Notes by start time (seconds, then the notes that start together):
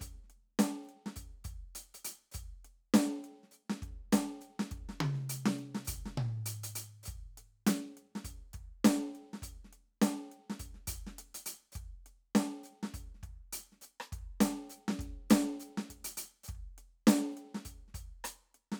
0.01 closed hi-hat, kick
0.24 snare
0.30 closed hi-hat
0.59 closed hi-hat, snare
0.83 hi-hat pedal
0.89 closed hi-hat
1.06 snare
1.16 closed hi-hat, kick
1.44 closed hi-hat, kick
1.51 kick
1.75 closed hi-hat
1.94 closed hi-hat
2.05 closed hi-hat
2.32 closed hi-hat, kick, hi-hat pedal
2.65 closed hi-hat
2.94 closed hi-hat, snare
3.24 closed hi-hat
3.43 snare
3.51 closed hi-hat, hi-hat pedal
3.70 snare
3.82 kick, closed hi-hat
3.88 kick
4.12 closed hi-hat, snare
4.41 closed hi-hat, hi-hat pedal
4.59 snare
4.71 kick, closed hi-hat
4.77 kick
4.89 snare
5.01 high tom
5.14 snare
5.21 snare
5.30 closed hi-hat
5.46 snare
5.59 closed hi-hat
5.75 snare
5.85 closed hi-hat, kick, hi-hat pedal
5.94 kick
5.97 kick
6.06 snare
6.18 mid tom
6.46 closed hi-hat
6.64 closed hi-hat
6.75 closed hi-hat
7.03 closed hi-hat, hi-hat pedal
7.08 kick
7.37 closed hi-hat
7.67 closed hi-hat, snare
7.97 closed hi-hat
8.15 snare
8.25 closed hi-hat, kick
8.53 kick, closed hi-hat
8.85 closed hi-hat, snare
9.15 closed hi-hat
9.33 snare
9.42 closed hi-hat, kick
9.65 snare
9.71 snare, closed hi-hat
10.02 closed hi-hat, snare
10.32 closed hi-hat
10.50 snare
10.60 closed hi-hat, kick
10.74 snare
10.87 closed hi-hat, kick
10.97 kick
11.07 snare
11.19 closed hi-hat
11.35 closed hi-hat
11.46 closed hi-hat
11.72 kick, closed hi-hat, hi-hat pedal
12.06 closed hi-hat
12.35 closed hi-hat, snare
12.63 closed hi-hat, hi-hat pedal
12.83 snare
12.94 closed hi-hat, kick
13.15 snare
13.20 kick, snare, closed hi-hat
13.53 closed hi-hat
13.72 snare
13.81 closed hi-hat, hi-hat pedal
14.00 cross-stick
14.12 kick, closed hi-hat
14.18 kick
14.21 kick
14.41 closed hi-hat, snare
14.70 closed hi-hat, hi-hat pedal
14.88 snare
14.99 kick, closed hi-hat
15.05 kick
15.08 kick
15.30 closed hi-hat, snare
15.60 hi-hat pedal
15.78 snare
15.90 kick, closed hi-hat
16.05 closed hi-hat
16.17 closed hi-hat
16.44 hi-hat pedal
16.48 kick, closed hi-hat
16.55 kick
16.78 closed hi-hat
17.07 closed hi-hat, snare
17.17 snare
17.31 hi-hat pedal
17.37 closed hi-hat
17.55 snare
17.65 closed hi-hat, kick
17.88 snare
17.94 closed hi-hat, kick
18.24 closed hi-hat, cross-stick
18.55 closed hi-hat
18.72 snare